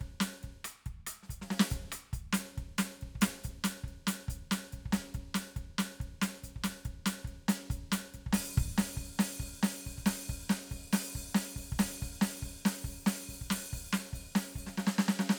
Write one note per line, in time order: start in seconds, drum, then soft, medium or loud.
0.01 kick soft
0.01 snare soft
0.01 closed hi-hat soft
0.20 closed hi-hat medium
0.20 snare loud
0.42 kick soft
0.42 snare soft
0.42 closed hi-hat soft
0.65 closed hi-hat medium
0.65 cross-stick medium
0.86 kick soft
0.86 closed hi-hat soft
1.07 closed hi-hat loud
1.07 cross-stick medium
1.16 snare soft
1.23 snare soft
1.30 closed hi-hat medium
1.30 kick soft
1.42 snare medium
1.51 snare medium
1.60 snare loud
1.71 closed hi-hat medium
1.71 kick medium
1.71 snare soft
1.92 closed hi-hat loud
1.92 cross-stick medium
2.13 closed hi-hat medium
2.13 kick medium
2.33 closed hi-hat loud
2.33 snare loud
2.57 kick soft
2.57 snare soft
2.57 closed hi-hat soft
2.78 closed hi-hat loud
2.78 snare loud
3.02 kick soft
3.02 closed hi-hat soft
3.15 kick soft
3.22 closed hi-hat loud
3.22 snare loud
3.41 closed hi-hat medium
3.41 kick soft
3.41 snare soft
3.64 closed hi-hat loud
3.64 snare loud
3.84 kick soft
3.84 snare soft
3.88 closed hi-hat soft
4.07 closed hi-hat loud
4.07 snare loud
4.28 closed hi-hat medium
4.28 kick medium
4.28 snare soft
4.51 closed hi-hat medium
4.51 snare loud
4.72 kick soft
4.72 snare soft
4.72 closed hi-hat medium
4.86 kick soft
4.93 closed hi-hat medium
4.93 snare loud
5.12 kick soft
5.12 snare soft
5.12 closed hi-hat medium
5.35 closed hi-hat medium
5.35 snare medium
5.56 kick soft
5.56 snare soft
5.56 closed hi-hat medium
5.79 closed hi-hat medium
5.79 snare loud
5.99 kick soft
5.99 snare soft
5.99 closed hi-hat soft
6.22 closed hi-hat medium
6.22 snare loud
6.44 closed hi-hat medium
6.44 kick soft
6.56 kick soft
6.64 closed hi-hat medium
6.64 snare medium
6.85 kick soft
6.85 closed hi-hat medium
7.06 closed hi-hat loud
7.06 snare loud
7.25 kick soft
7.25 closed hi-hat soft
7.49 closed hi-hat loud
7.49 snare loud
7.70 closed hi-hat medium
7.70 kick medium
7.70 snare soft
7.92 closed hi-hat loud
7.92 snare loud
8.14 kick soft
8.14 closed hi-hat medium
8.27 kick soft
8.33 open hi-hat loud
8.33 snare loud
8.57 open hi-hat medium
8.57 kick loud
8.78 open hi-hat loud
8.78 snare loud
8.97 kick medium
8.97 open hi-hat soft
9.19 open hi-hat loud
9.19 snare loud
9.40 open hi-hat medium
9.40 kick soft
9.63 open hi-hat loud
9.63 snare loud
9.85 open hi-hat medium
9.85 kick soft
9.85 snare soft
9.98 kick soft
10.06 open hi-hat loud
10.06 snare loud
10.29 open hi-hat medium
10.29 kick medium
10.50 open hi-hat medium
10.50 snare loud
10.71 open hi-hat medium
10.71 kick soft
10.93 open hi-hat loud
10.93 snare loud
11.15 open hi-hat medium
11.15 kick soft
11.35 open hi-hat loud
11.35 snare loud
11.49 snare soft
11.56 open hi-hat medium
11.56 kick soft
11.72 kick medium
11.79 open hi-hat loud
11.79 snare loud
11.93 snare soft
12.02 open hi-hat medium
12.02 kick medium
12.22 open hi-hat loud
12.22 snare loud
12.42 open hi-hat medium
12.42 kick soft
12.42 snare soft
12.65 open hi-hat medium
12.65 snare loud
12.84 open hi-hat medium
12.84 kick soft
12.84 snare soft
13.07 open hi-hat loud
13.07 snare loud
13.29 open hi-hat medium
13.29 kick soft
13.41 kick soft
13.50 open hi-hat loud
13.50 snare loud
13.73 open hi-hat medium
13.73 kick soft
13.93 open hi-hat medium
13.93 snare loud
14.13 open hi-hat medium
14.13 kick soft
14.13 snare soft
14.35 open hi-hat medium
14.35 snare loud
14.56 open hi-hat medium
14.56 kick soft
14.67 snare medium
14.78 snare loud
14.87 snare loud
14.99 snare loud
15.08 snare loud
15.19 snare loud